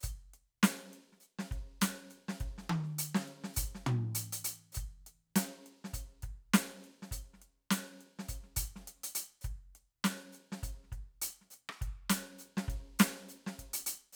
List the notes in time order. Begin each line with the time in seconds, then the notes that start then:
0.00 closed hi-hat, kick, hi-hat pedal
0.34 closed hi-hat
0.63 closed hi-hat, snare
0.93 closed hi-hat
1.12 snare
1.20 closed hi-hat, hi-hat pedal
1.39 snare
1.51 kick, closed hi-hat
1.57 kick
1.81 closed hi-hat, snare
2.10 closed hi-hat, hi-hat pedal
2.28 snare
2.40 kick, closed hi-hat
2.46 kick
2.58 snare
2.69 high tom
2.83 snare
2.89 snare
2.98 closed hi-hat
3.15 snare
3.28 closed hi-hat
3.44 snare
3.54 closed hi-hat, kick, hi-hat pedal
3.63 kick
3.66 kick
3.75 snare
3.86 mid tom
4.15 closed hi-hat
4.32 closed hi-hat
4.44 closed hi-hat
4.72 closed hi-hat, hi-hat pedal
4.77 kick
5.06 closed hi-hat
5.36 closed hi-hat, snare
5.66 closed hi-hat
5.84 snare
5.93 closed hi-hat, kick
6.22 kick, closed hi-hat
6.54 closed hi-hat, snare
6.84 closed hi-hat
7.02 snare
7.11 closed hi-hat, kick
7.33 snare
7.40 snare, closed hi-hat
7.71 closed hi-hat, snare
8.01 closed hi-hat
8.19 snare
8.29 closed hi-hat, kick
8.43 snare
8.56 closed hi-hat, kick
8.66 kick
8.76 snare
8.87 closed hi-hat
9.03 closed hi-hat
9.15 closed hi-hat
9.41 kick, closed hi-hat, hi-hat pedal
9.75 closed hi-hat
10.04 closed hi-hat, snare
10.32 closed hi-hat, hi-hat pedal
10.52 snare
10.63 closed hi-hat, kick
10.83 snare
10.89 kick, snare, closed hi-hat
11.22 closed hi-hat
11.41 snare
11.50 closed hi-hat, hi-hat pedal
11.69 cross-stick
11.81 kick, closed hi-hat
11.87 kick
11.90 kick
12.10 closed hi-hat, snare
12.39 closed hi-hat, hi-hat pedal
12.57 snare
12.68 kick, closed hi-hat
12.74 kick
12.77 kick
12.99 closed hi-hat, snare
13.29 hi-hat pedal
13.46 snare
13.59 kick, closed hi-hat
13.73 closed hi-hat
13.86 closed hi-hat
14.12 hi-hat pedal